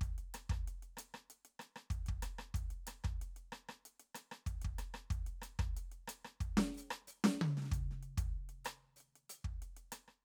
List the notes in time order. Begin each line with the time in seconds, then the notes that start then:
0.01 kick, closed hi-hat
0.18 closed hi-hat
0.34 cross-stick, closed hi-hat
0.50 kick, cross-stick
0.68 closed hi-hat
0.83 closed hi-hat
0.97 cross-stick, closed hi-hat
1.14 cross-stick
1.30 closed hi-hat
1.45 closed hi-hat
1.59 cross-stick, closed hi-hat
1.76 cross-stick
1.90 kick, closed hi-hat
2.06 kick, closed hi-hat
2.22 cross-stick, closed hi-hat
2.39 cross-stick
2.54 kick, closed hi-hat
2.70 closed hi-hat
2.87 cross-stick, closed hi-hat
3.04 kick, cross-stick
3.22 closed hi-hat
3.36 closed hi-hat
3.52 cross-stick
3.69 cross-stick
3.85 closed hi-hat
4.00 closed hi-hat
4.15 cross-stick, closed hi-hat
4.32 cross-stick
4.46 kick, closed hi-hat
4.62 kick, closed hi-hat
4.79 cross-stick, closed hi-hat
4.94 cross-stick
5.10 kick, closed hi-hat
5.27 closed hi-hat
5.42 cross-stick, closed hi-hat
5.59 kick, cross-stick
5.77 closed hi-hat
5.92 closed hi-hat
6.08 cross-stick, closed hi-hat
6.25 cross-stick
6.41 kick, closed hi-hat
6.57 snare
6.74 hi-hat pedal, open hi-hat
6.91 cross-stick
7.07 hi-hat pedal
7.24 snare
7.34 kick
7.41 high tom
7.57 snare
7.62 snare
7.65 snare
7.69 kick, snare
7.74 closed hi-hat
7.91 snare
8.03 closed hi-hat
8.18 kick, closed hi-hat
8.49 closed hi-hat
8.65 closed hi-hat, cross-stick
8.96 hi-hat pedal
9.00 closed hi-hat
9.16 closed hi-hat
9.30 closed hi-hat
9.44 kick
9.62 closed hi-hat
9.77 closed hi-hat
9.92 cross-stick, closed hi-hat
10.08 cross-stick